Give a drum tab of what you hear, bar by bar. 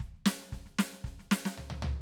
Snare     |ggogggogggoo----|
Floor tom |------------ooo-|
Kick      |o---g---o-------|